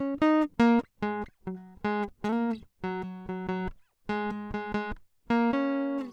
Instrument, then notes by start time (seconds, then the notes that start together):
acoustic guitar
0.02 C#4
0.23 D#4
0.61 A#3
1.04 G#3
1.49 F#3
1.86 G#3
2.25 A#3
2.85 F#3
3.31 F#3
3.51 F#3
4.11 G#3
4.56 G#3
4.76 G#3
5.32 A#3
5.55 C#4
6.01 G#3